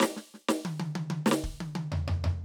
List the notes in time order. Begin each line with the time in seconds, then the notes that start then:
0.00 snare
0.02 snare
0.16 snare
0.34 snare
0.49 snare
0.65 high tom
0.79 high tom
0.95 high tom
1.10 high tom
1.26 snare
1.31 snare
1.43 kick
1.60 high tom
1.75 high tom
1.92 floor tom
2.08 floor tom
2.24 floor tom